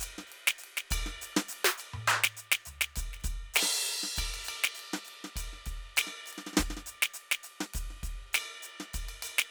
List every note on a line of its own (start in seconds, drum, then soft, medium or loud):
0.01 hi-hat pedal loud
0.01 ride bell medium
0.19 snare soft
0.27 hi-hat pedal soft
0.32 ride medium
0.48 snare loud
0.59 hi-hat pedal medium
0.64 ride medium
0.78 snare medium
0.91 kick medium
0.91 hi-hat pedal loud
0.91 ride bell loud
0.98 kick soft
1.02 kick soft
1.07 snare soft
1.15 kick soft
1.22 hi-hat pedal medium
1.22 ride medium
1.37 snare loud
1.49 hi-hat pedal medium
1.53 ride medium
1.65 snare loud
1.78 hi-hat pedal medium
1.78 ride bell medium
1.94 mid tom medium
2.08 percussion loud
2.08 hi-hat pedal medium
2.24 snare loud
2.37 hi-hat pedal medium
2.52 snare loud
2.66 floor tom soft
2.66 hi-hat pedal medium
2.82 snare loud
2.96 kick soft
2.96 hi-hat pedal loud
2.96 ride bell medium
3.04 kick soft
3.07 kick soft
3.14 snare soft
3.21 snare soft
3.23 kick medium
3.23 snare soft
3.23 hi-hat pedal medium
3.23 ride bell medium
3.31 kick soft
3.34 kick soft
3.54 snare loud
3.54 hi-hat pedal medium
3.54 crash loud
3.63 snare medium
3.84 hi-hat pedal medium
3.89 ride soft
4.04 snare soft
4.17 kick soft
4.17 snare soft
4.17 hi-hat pedal medium
4.17 ride bell loud
4.24 kick soft
4.24 snare soft
4.34 ride bell medium
4.45 hi-hat pedal medium
4.49 ride bell loud
4.64 snare loud
4.75 hi-hat pedal medium
4.80 ride medium
4.94 snare medium
5.05 hi-hat pedal soft
5.05 ride soft
5.25 snare soft
5.36 kick soft
5.36 hi-hat pedal medium
5.36 ride bell medium
5.53 snare soft
5.66 kick soft
5.66 hi-hat pedal medium
5.66 ride soft
5.97 snare loud
5.97 hi-hat pedal medium
5.97 ride bell loud
6.07 snare soft
6.26 hi-hat pedal medium
6.26 ride bell soft
6.33 ride soft
6.38 snare soft
6.47 snare soft
6.54 snare soft
6.57 kick soft
6.57 snare loud
6.57 hi-hat pedal medium
6.66 kick soft
6.69 kick soft
6.69 snare soft
6.77 snare soft
6.87 hi-hat pedal medium
6.87 ride bell soft
7.03 snare loud
7.14 hi-hat pedal medium
7.14 ride soft
7.32 snare loud
7.44 hi-hat pedal medium
7.44 ride medium
7.61 snare medium
7.74 kick soft
7.74 hi-hat pedal medium
7.74 ride medium
7.85 kick soft
7.91 snare soft
7.97 snare soft
8.04 kick soft
8.04 hi-hat pedal medium
8.04 ride soft
8.34 snare loud
8.34 hi-hat pedal medium
8.34 ride bell loud
8.63 hi-hat pedal medium
8.63 ride soft
8.80 snare medium
8.94 kick soft
8.94 hi-hat pedal medium
8.94 ride bell medium
9.03 kick soft
9.09 ride bell medium
9.23 hi-hat pedal medium
9.23 ride bell loud
9.39 snare loud